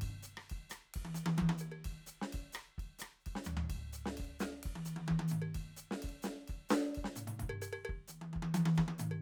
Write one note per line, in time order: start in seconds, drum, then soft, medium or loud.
0.01 kick soft
0.01 ride bell medium
0.08 kick soft
0.22 hi-hat pedal medium
0.22 ride soft
0.37 cross-stick medium
0.50 kick soft
0.50 ride bell medium
0.70 cross-stick medium
0.70 hi-hat pedal medium
0.94 kick soft
0.94 ride medium
1.01 kick soft
1.01 high tom medium
1.14 hi-hat pedal medium
1.14 high tom medium
1.26 high tom loud
1.35 hi-hat pedal soft
1.35 high tom loud
1.41 kick soft
1.46 kick soft
1.46 high tom loud
1.58 hi-hat pedal medium
1.58 percussion medium
1.71 percussion medium
1.84 kick soft
1.84 ride bell medium
2.06 hi-hat pedal medium
2.06 ride soft
2.21 snare medium
2.32 kick soft
2.32 ride bell medium
2.52 cross-stick medium
2.52 hi-hat pedal medium
2.78 kick soft
2.78 ride bell soft
2.99 cross-stick medium
2.99 hi-hat pedal loud
3.20 hi-hat pedal soft
3.26 kick soft
3.26 ride bell soft
3.35 snare medium
3.44 floor tom medium
3.44 hi-hat pedal medium
3.57 floor tom medium
3.69 kick soft
3.69 ride bell medium
3.75 kick soft
3.92 hi-hat pedal medium
3.92 ride soft
4.05 snare medium
4.17 kick soft
4.17 ride bell medium
4.24 ride soft
4.39 snare medium
4.39 hi-hat pedal medium
4.63 kick soft
4.63 ride medium
4.73 kick soft
4.73 high tom medium
4.85 hi-hat pedal medium
4.85 high tom soft
4.96 high tom medium
5.05 hi-hat pedal soft
5.05 high tom loud
5.11 kick soft
5.19 high tom loud
5.28 hi-hat pedal medium
5.28 mid tom medium
5.41 percussion medium
5.54 kick soft
5.54 ride bell medium
5.76 hi-hat pedal medium
5.91 snare medium
6.02 kick soft
6.02 ride bell medium
6.09 ride soft
6.22 snare medium
6.22 hi-hat pedal medium
6.47 kick soft
6.47 ride bell soft
6.69 snare medium
6.69 hi-hat pedal medium
6.95 kick soft
6.95 ride bell soft
7.04 snare medium
7.15 hi-hat pedal loud
7.15 mid tom medium
7.27 mid tom medium
7.39 kick soft
7.39 mid tom medium
7.49 percussion loud
7.61 hi-hat pedal medium
7.61 percussion medium
7.68 ride soft
7.72 percussion loud
7.85 percussion loud
7.89 kick soft
7.96 kick soft
8.07 hi-hat pedal medium
8.07 high tom soft
8.21 high tom medium
8.33 kick soft
8.33 high tom medium
8.42 kick soft
8.42 high tom medium
8.54 hi-hat pedal medium
8.54 high tom loud
8.65 high tom loud
8.75 kick soft
8.75 hi-hat pedal soft
8.75 high tom loud
8.88 high tom medium
8.98 hi-hat pedal medium
8.98 mid tom medium
9.11 percussion medium